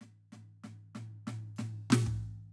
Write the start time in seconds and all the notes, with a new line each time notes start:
0.01 snare, floor tom
0.33 snare, floor tom
0.64 snare, floor tom
0.95 snare, floor tom
1.27 snare, floor tom
1.57 snare, floor tom, percussion
1.91 snare, floor tom
2.07 kick